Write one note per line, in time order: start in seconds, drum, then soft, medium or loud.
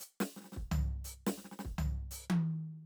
0.00 hi-hat pedal medium
0.20 snare medium
0.36 snare soft
0.41 snare soft
0.44 snare soft
0.52 snare soft
0.56 kick medium
0.71 floor tom loud
1.04 hi-hat pedal medium
1.27 snare loud
1.37 snare soft
1.44 snare soft
1.51 snare soft
1.59 snare soft
1.65 kick soft
1.78 floor tom medium
2.11 hi-hat pedal medium
2.30 high tom loud